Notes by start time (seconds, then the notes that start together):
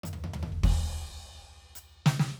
0.04 mid tom, percussion
0.13 floor tom
0.24 mid tom
0.34 floor tom
0.43 mid tom
0.52 kick
0.64 kick, crash
1.33 kick
1.75 percussion
2.06 snare
2.20 snare